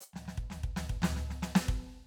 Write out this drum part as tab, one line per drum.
Hi-hat    |p---------------|
Snare     |-oo-o-o-ooooo---|
Floor tom |-oo-o-o-o-------|
Kick      |---o-o-o-----o--|